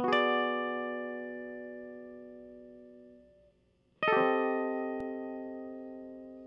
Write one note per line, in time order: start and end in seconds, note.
0.00 3.32 B3
0.04 3.23 F#4
0.08 2.35 G#4
0.13 3.49 D5
4.03 6.47 D#5
4.08 6.47 A4
4.13 6.47 G4
4.17 6.47 C4